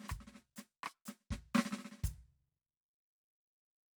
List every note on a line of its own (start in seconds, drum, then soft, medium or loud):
0.01 snare soft
0.04 snare soft
0.08 cross-stick medium
0.08 snare soft
0.08 hi-hat pedal medium
0.12 kick soft
0.21 snare soft
0.28 snare soft
0.32 snare soft
0.35 snare soft
0.57 snare soft
0.57 hi-hat pedal medium
0.84 cross-stick medium
0.87 cross-stick medium
1.06 snare soft
1.06 hi-hat pedal medium
1.21 snare soft
1.25 snare soft
1.31 kick soft
1.31 snare soft
1.55 snare medium
1.55 hi-hat pedal medium
1.59 snare medium
1.66 snare soft
1.72 snare soft
1.72 snare medium
1.77 snare soft
1.79 snare soft
1.85 snare soft
1.92 snare soft
1.94 snare soft
1.99 snare soft
2.03 kick medium
2.03 snare soft
2.03 hi-hat pedal loud
2.08 kick soft
2.08 snare soft
2.14 kick soft